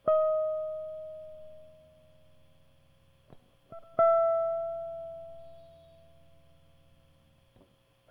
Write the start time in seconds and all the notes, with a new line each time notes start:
0.08 D#5
3.99 E5